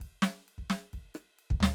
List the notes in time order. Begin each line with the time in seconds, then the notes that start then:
0.00 kick, ride
0.22 snare, ride
0.48 ride
0.58 kick
0.70 snare, ride
0.93 kick, ride
1.14 cross-stick, ride
1.24 snare
1.39 ride
1.50 kick
1.60 snare, floor tom